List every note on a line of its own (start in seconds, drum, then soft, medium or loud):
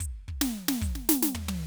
0.00 closed hi-hat loud
0.00 kick soft
0.28 kick soft
0.41 closed hi-hat loud
0.41 snare loud
0.68 snare loud
0.81 closed hi-hat medium
0.81 kick medium
0.95 snare medium
1.09 snare loud
1.22 snare loud
1.35 floor tom loud
1.48 high tom loud